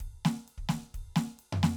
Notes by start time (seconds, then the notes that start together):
0.03 kick, ride
0.25 snare, ride
0.48 ride
0.58 kick
0.69 snare, ride
0.94 kick, ride
1.16 snare, ride
1.39 ride
1.52 floor tom
1.63 snare